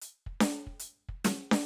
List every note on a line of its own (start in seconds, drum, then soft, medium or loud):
0.02 closed hi-hat medium
0.26 kick soft
0.40 closed hi-hat loud
0.40 snare loud
0.67 kick soft
0.80 closed hi-hat loud
1.09 kick soft
1.24 closed hi-hat loud
1.24 snare loud
1.51 snare loud